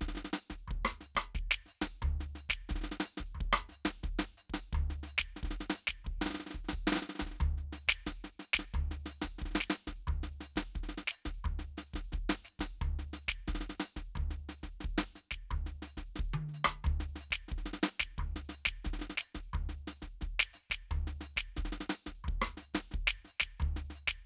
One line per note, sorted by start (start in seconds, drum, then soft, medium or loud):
0.01 kick soft
0.01 snare soft
0.08 snare soft
0.15 snare soft
0.17 snare soft
0.25 snare soft
0.33 snare medium
0.33 hi-hat pedal soft
0.50 kick soft
0.50 snare soft
0.68 kick soft
0.68 floor tom medium
0.85 cross-stick medium
1.01 snare soft
1.01 hi-hat pedal soft
1.15 kick soft
1.15 cross-stick medium
1.35 kick soft
1.35 snare soft
1.51 snare medium
1.66 snare soft
1.66 hi-hat pedal soft
1.82 kick soft
1.82 snare medium
2.02 kick soft
2.02 floor tom medium
2.21 snare soft
2.35 snare soft
2.35 hi-hat pedal soft
2.49 kick soft
2.49 snare medium
2.69 kick soft
2.69 snare soft
2.76 snare soft
2.81 snare soft
2.84 snare soft
2.91 snare soft
3.00 snare medium
3.04 hi-hat pedal medium
3.17 kick soft
3.17 snare soft
3.35 floor tom medium
3.41 kick soft
3.53 cross-stick loud
3.69 snare soft
3.69 hi-hat pedal medium
3.85 kick soft
3.85 snare medium
4.03 kick soft
4.03 snare soft
4.19 snare medium
4.37 hi-hat pedal soft
4.50 kick soft
4.54 snare medium
4.73 kick soft
4.73 floor tom medium
4.90 snare soft
5.03 snare soft
5.03 hi-hat pedal medium
5.18 kick soft
5.18 snare medium
5.36 snare soft
5.43 kick soft
5.43 snare soft
5.51 snare soft
5.61 snare soft
5.70 snare medium
5.75 hi-hat pedal medium
5.87 kick soft
5.87 snare medium
6.04 kick soft
6.04 floor tom soft
6.21 snare medium
6.26 snare medium
6.30 snare soft
6.34 snare medium
6.34 hi-hat pedal soft
6.40 snare soft
6.46 snare soft
6.51 kick soft
6.51 snare soft
6.55 snare soft
6.64 snare soft
6.69 snare medium
6.73 kick soft
6.87 snare medium
6.92 snare medium
6.95 snare medium
7.06 snare soft
7.06 hi-hat pedal soft
7.15 snare soft
7.19 kick soft
7.19 snare medium
7.26 snare soft
7.31 snare soft
7.36 snare soft
7.40 kick soft
7.40 snare soft
7.40 floor tom medium
7.58 snare soft
7.73 snare soft
7.73 hi-hat pedal medium
7.88 kick soft
7.88 snare loud
8.07 kick soft
8.07 snare medium
8.24 snare soft
8.39 snare soft
8.39 hi-hat pedal medium
8.53 kick soft
8.53 snare medium
8.59 snare soft
8.74 kick soft
8.74 floor tom medium
8.91 snare soft
9.06 snare soft
9.06 hi-hat pedal medium
9.22 kick soft
9.22 snare medium
9.38 kick soft
9.38 snare soft
9.45 snare soft
9.51 snare soft
9.55 snare medium
9.60 snare medium
9.70 snare medium
9.70 hi-hat pedal medium
9.87 kick soft
9.87 snare soft
10.07 kick soft
10.07 floor tom medium
10.23 snare soft
10.41 snare soft
10.41 hi-hat pedal medium
10.56 kick soft
10.56 snare medium
10.75 kick soft
10.75 snare soft
10.83 snare soft
10.89 snare soft
10.98 snare soft
11.07 snare medium
11.07 hi-hat pedal medium
11.25 kick soft
11.25 snare soft
11.44 kick soft
11.44 floor tom medium
11.59 snare soft
11.77 snare soft
11.77 hi-hat pedal medium
11.94 kick soft
11.94 snare soft
12.12 kick soft
12.12 snare soft
12.29 snare medium
12.44 snare soft
12.44 hi-hat pedal medium
12.59 kick soft
12.59 snare medium
12.81 kick soft
12.81 floor tom medium
12.99 snare soft
13.13 snare soft
13.13 hi-hat pedal medium
13.28 kick soft
13.28 snare medium
13.48 kick soft
13.48 snare soft
13.55 snare soft
13.61 snare soft
13.70 snare soft
13.80 snare medium
13.84 hi-hat pedal medium
13.96 kick soft
13.96 snare soft
14.15 kick soft
14.15 floor tom medium
14.31 snare soft
14.49 snare soft
14.49 hi-hat pedal medium
14.63 kick soft
14.63 snare soft
14.80 kick soft
14.80 snare soft
14.98 snare medium
15.15 snare soft
15.15 hi-hat pedal medium
15.31 kick soft
15.31 snare soft
15.51 kick soft
15.51 floor tom medium
15.66 snare soft
15.82 snare soft
15.87 hi-hat pedal soft
15.97 kick soft
15.97 snare soft
16.16 kick soft
16.16 snare soft
16.34 high tom medium
16.49 snare soft
16.54 hi-hat pedal medium
16.64 kick soft
16.64 cross-stick loud
16.84 kick soft
16.84 floor tom medium
17.00 snare soft
17.16 snare soft
17.20 hi-hat pedal medium
17.31 kick soft
17.31 snare medium
17.48 kick soft
17.48 snare soft
17.58 snare soft
17.66 snare soft
17.73 snare soft
17.83 snare loud
17.83 hi-hat pedal medium
18.00 kick soft
18.00 snare medium
18.18 kick soft
18.18 floor tom medium
18.36 snare soft
18.49 snare soft
18.49 hi-hat pedal medium
18.65 kick soft
18.65 snare medium
18.85 kick soft
18.85 snare soft
18.93 snare soft
18.99 snare soft
19.01 snare soft
19.10 snare soft
19.18 snare medium
19.18 hi-hat pedal medium
19.35 kick soft
19.35 snare soft
19.53 kick soft
19.53 floor tom medium
19.69 snare soft
19.87 snare soft
19.87 hi-hat pedal medium
20.02 kick soft
20.02 snare soft
20.21 kick soft
20.21 snare soft
20.39 snare loud
20.53 snare soft
20.53 hi-hat pedal medium
20.70 kick soft
20.70 snare medium
20.91 kick soft
20.91 floor tom medium
21.07 snare soft
21.21 snare soft
21.21 hi-hat pedal medium
21.37 kick soft
21.37 snare medium
21.57 kick soft
21.57 snare soft
21.65 snare soft
21.72 snare soft
21.80 snare soft
21.89 snare medium
21.89 hi-hat pedal soft
22.06 kick soft
22.06 snare soft
22.24 floor tom medium
22.28 kick soft
22.42 cross-stick medium
22.57 snare soft
22.61 hi-hat pedal soft
22.74 kick soft
22.74 snare medium
22.91 kick soft
22.91 snare soft
23.07 snare medium
23.25 snare soft
23.25 hi-hat pedal soft
23.40 kick soft
23.40 snare medium
23.60 kick soft
23.60 floor tom medium
23.76 snare soft
23.90 snare soft
23.95 hi-hat pedal soft
24.08 kick soft
24.08 snare medium